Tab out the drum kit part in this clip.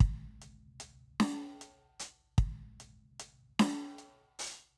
HH |xxxxxxxxxxxx|
SD |---o-----o--|
BD |o-----o-----|